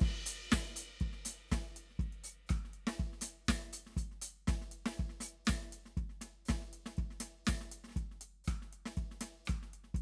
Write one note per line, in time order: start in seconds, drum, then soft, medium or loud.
0.01 kick medium
0.01 crash medium
0.14 snare soft
0.26 open hi-hat loud
0.50 kick medium
0.50 snare loud
0.50 closed hi-hat soft
0.50 hi-hat pedal soft
0.66 snare soft
0.76 closed hi-hat medium
0.88 snare soft
1.00 kick medium
1.00 closed hi-hat soft
1.13 snare soft
1.25 open hi-hat loud
1.25 snare soft
1.48 snare medium
1.48 hi-hat pedal soft
1.52 kick medium
1.52 closed hi-hat medium
1.77 closed hi-hat medium
1.91 snare soft
2.00 kick medium
2.00 closed hi-hat soft
2.13 closed hi-hat soft
2.23 open hi-hat medium
2.23 snare soft
2.47 kick medium
2.47 cross-stick medium
2.47 closed hi-hat medium
2.47 hi-hat pedal soft
2.65 snare soft
2.74 closed hi-hat soft
2.87 snare medium
2.99 kick medium
2.99 closed hi-hat soft
3.13 snare soft
3.22 closed hi-hat loud
3.22 snare soft
3.45 kick medium
3.45 snare loud
3.45 closed hi-hat medium
3.45 hi-hat pedal soft
3.62 snare soft
3.73 closed hi-hat medium
3.87 snare soft
3.90 snare soft
3.93 snare soft
3.97 closed hi-hat medium
3.97 kick medium
4.12 snare soft
4.22 closed hi-hat loud
4.48 kick medium
4.48 snare medium
4.48 closed hi-hat medium
4.62 snare soft
4.72 closed hi-hat medium
4.86 snare medium
4.98 kick medium
4.98 closed hi-hat soft
5.10 snare soft
5.21 open hi-hat loud
5.21 snare soft
5.45 snare loud
5.45 closed hi-hat medium
5.45 hi-hat pedal soft
5.50 kick medium
5.62 snare soft
5.73 closed hi-hat medium
5.86 snare soft
5.97 kick medium
5.97 closed hi-hat soft
6.10 snare soft
6.21 snare soft
6.21 open hi-hat medium
6.46 snare medium
6.46 closed hi-hat medium
6.46 hi-hat pedal medium
6.50 kick medium
6.62 snare soft
6.73 closed hi-hat medium
6.86 snare medium
6.97 kick medium
6.97 closed hi-hat soft
7.11 snare soft
7.20 snare soft
7.20 open hi-hat loud
7.45 kick medium
7.45 snare medium
7.45 closed hi-hat medium
7.45 hi-hat pedal soft
7.61 snare soft
7.72 closed hi-hat medium
7.84 snare soft
7.89 snare soft
7.91 snare soft
7.97 kick medium
7.97 closed hi-hat soft
8.12 snare soft
8.21 open hi-hat medium
8.44 kick medium
8.44 cross-stick medium
8.44 closed hi-hat medium
8.44 hi-hat pedal medium
8.62 snare soft
8.73 closed hi-hat soft
8.86 snare medium
8.97 kick medium
8.97 closed hi-hat soft
9.11 snare soft
9.21 snare medium
9.21 open hi-hat medium
9.46 cross-stick medium
9.46 closed hi-hat medium
9.46 hi-hat pedal medium
9.50 kick medium
9.63 snare soft
9.74 closed hi-hat soft
9.84 snare soft
9.95 kick medium
9.95 closed hi-hat soft